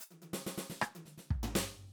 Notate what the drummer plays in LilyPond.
\new DrumStaff \drummode { \time 4/4 \tempo 4 = 125 hhp16 tommh16 tommh16 sn16 sn16 sn16 sn16 ss16 tommh16 sn16 sn16 bd16 tomfh16 sn8. | }